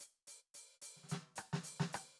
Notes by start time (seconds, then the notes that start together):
0.00 hi-hat pedal
0.27 hi-hat pedal
0.54 hi-hat pedal
0.82 hi-hat pedal
0.96 snare
1.03 snare
1.09 snare, hi-hat pedal
1.36 cross-stick, hi-hat pedal
1.53 snare
1.63 hi-hat pedal
1.80 snare
1.93 cross-stick, hi-hat pedal